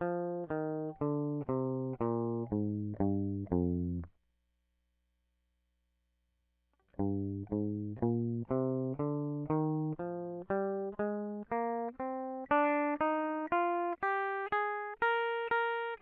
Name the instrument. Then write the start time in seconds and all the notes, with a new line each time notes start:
electric guitar
0.02 F3
0.51 D#3
1.02 D3
1.50 C3
2.02 A#2
2.54 G#2
3.02 G2
3.54 F2
7.01 G2
7.54 G#2
8.04 A#2
8.52 C3
9.00 D3
9.51 D#3
10.00 F3
10.51 G3
11.00 G#3
11.52 A#3
12.00 C4
12.51 D4
13.01 D#4
13.52 F4
14.03 G4
14.52 G#4
15.02 A#4
15.51 A#4